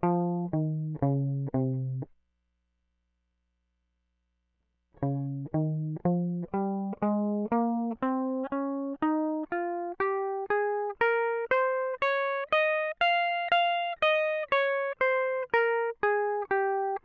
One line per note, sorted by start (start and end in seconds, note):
0.04 0.50 F3
0.54 0.99 D#3
1.04 1.51 C#3
1.56 2.07 C3
5.04 5.51 C#3
5.55 6.00 D#3
6.06 6.48 F3
6.54 6.97 G3
7.03 7.49 G#3
7.52 7.96 A#3
8.03 8.48 C4
8.53 8.97 C#4
9.03 9.47 D#4
9.52 9.96 F4
10.00 10.48 G4
10.51 10.95 G#4
11.01 11.48 A#4
11.51 11.98 C5
12.02 12.47 C#5
12.53 12.95 D#5
13.01 13.51 F5
13.52 13.97 F5
14.03 14.46 D#5
14.52 14.95 C#5
15.01 15.46 C5
15.54 15.94 A#4
16.03 16.46 G#4
16.51 17.00 G4